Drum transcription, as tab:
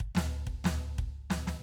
SD |-o--o---oo--|
FT |-o--o---oo--|
BD |o--o--o-----|